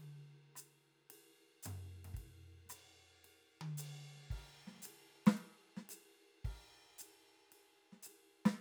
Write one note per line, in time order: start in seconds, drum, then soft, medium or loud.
0.01 ride soft
0.18 snare soft
0.57 cross-stick soft
0.57 hi-hat pedal medium
0.57 ride soft
1.12 ride medium
1.64 floor tom medium
1.64 hi-hat pedal medium
1.64 ride soft
2.06 floor tom soft
2.06 ride soft
2.16 kick soft
2.16 ride soft
2.67 snare soft
2.67 hi-hat pedal medium
2.71 cross-stick soft
2.71 ride soft
3.26 ride soft
3.62 high tom medium
3.79 hi-hat pedal medium
3.79 ride soft
4.17 snare soft
4.32 kick soft
4.32 crash soft
4.68 snare soft
4.74 snare soft
4.77 snare soft
4.80 snare soft
4.83 snare soft
4.83 hi-hat pedal medium
4.83 ride medium
5.28 snare loud
5.28 ride soft
5.38 ride soft
5.78 snare soft
5.91 hi-hat pedal medium
5.91 ride medium
6.46 kick soft
6.46 crash soft
7.00 hi-hat pedal medium
7.00 ride soft
7.53 ride soft
7.94 snare soft
8.04 hi-hat pedal medium
8.04 ride soft
8.47 snare medium
8.47 ride soft